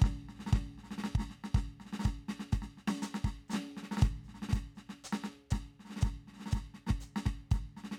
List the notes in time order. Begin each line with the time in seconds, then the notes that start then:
0.01 kick, snare
0.05 snare
0.29 snare
0.34 snare
0.40 snare
0.47 snare
0.53 kick, snare
0.79 snare
0.84 snare
0.91 snare
0.99 snare
1.05 snare
1.16 kick, snare
1.20 snare
1.31 snare
1.45 snare
1.55 kick, snare
1.81 snare
1.86 snare
1.93 snare
2.00 snare
2.04 kick, snare, hi-hat pedal
2.06 snare
2.29 snare
2.40 snare
2.53 kick, snare, hi-hat pedal
2.63 snare
2.78 snare
3.03 snare, hi-hat pedal
3.15 snare
3.24 kick, snare, hi-hat pedal
3.49 snare, hi-hat pedal, open hi-hat
3.54 snare
3.77 snare
3.84 snare
3.92 snare
3.98 snare
4.01 kick, snare, hi-hat pedal
4.04 snare
4.25 hi-hat pedal
4.29 snare
4.35 snare
4.43 snare
4.50 snare, hi-hat pedal
4.54 kick, snare
4.76 snare, hi-hat pedal
4.90 snare
5.05 hi-hat pedal
5.13 snare
5.25 snare
5.51 kick, snare, hi-hat pedal
5.80 snare
5.86 snare
5.97 snare
6.00 kick, snare, hi-hat pedal
6.05 snare
6.28 snare
6.33 snare
6.37 snare
6.41 snare
6.47 snare
6.51 kick, snare, hi-hat pedal
6.56 snare
6.75 snare
6.88 snare
6.89 kick, snare
7.01 hi-hat pedal
7.17 snare
7.26 kick, snare
7.52 kick, snare, hi-hat pedal
7.77 snare
7.85 snare
7.92 snare